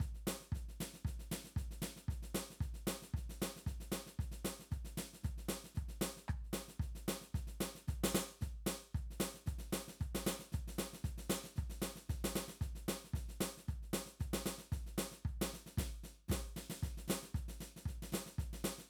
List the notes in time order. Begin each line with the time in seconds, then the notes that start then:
0.00 kick, snare
0.14 snare
0.27 snare
0.41 snare
0.52 kick, snare
0.69 snare
0.80 snare
0.94 snare
1.05 kick, snare
1.19 snare
1.31 snare
1.44 snare
1.56 kick, snare
1.71 snare
1.82 snare
1.96 snare
2.08 kick, snare
2.23 snare
2.35 snare
2.50 snare
2.61 kick, snare
2.74 snare
2.87 snare
3.02 snare
3.14 kick, snare
3.29 snare
3.42 snare
3.56 snare
3.66 kick, snare
3.80 snare
3.92 snare
4.07 snare
4.19 kick, snare
4.32 snare
4.45 snare
4.60 snare
4.71 kick, snare
4.85 snare
4.97 snare
5.13 snare
5.25 kick
5.38 snare
5.49 snare
5.64 snare
5.75 kick, snare
5.88 snare
6.01 snare
6.17 snare
6.28 kick, cross-stick
6.44 snare
6.53 snare
6.68 snare
6.79 kick, snare
6.95 snare
7.08 snare
7.21 snare
7.34 kick, snare
7.47 snare
7.60 snare
7.75 snare
7.88 kick, snare
8.04 snare
8.15 snare
8.31 snare
8.41 kick, snare
8.66 snare
8.95 kick, snare
9.11 snare
9.20 snare
9.34 snare
9.46 kick, snare
9.58 snare
9.73 snare
9.88 snare
10.00 kick, snare
10.15 snare
10.26 snare
10.39 snare
10.52 kick, snare
10.68 snare
10.78 snare
10.93 snare
11.04 kick, snare
11.18 snare
11.30 snare
11.44 snare
11.56 kick, snare
11.70 snare
11.82 snare
11.96 snare
12.09 kick, snare
12.24 snare
12.35 snare
12.48 snare
12.61 kick, snare
12.75 snare
12.88 snare
13.04 snare
13.13 kick, snare
13.29 snare
13.41 snare
13.58 snare
13.68 kick, snare
13.83 snare
13.93 snare
14.06 snare
14.20 kick, snare
14.33 snare
14.46 snare
14.58 snare
14.72 kick, snare
14.86 snare
14.98 snare
15.12 snare
15.25 kick, snare
15.41 snare
15.54 snare
15.66 snare
15.78 kick, snare
16.04 snare
16.28 kick, snare
16.31 snare
16.56 snare
16.70 snare
16.83 kick, snare
16.97 snare
17.08 snare
17.10 snare
17.23 snare
17.34 kick, snare
17.48 snare
17.60 snare
17.76 snare
17.86 kick, snare
18.02 snare
18.14 snare
18.26 snare
18.38 kick, snare
18.53 snare
18.64 snare
18.78 snare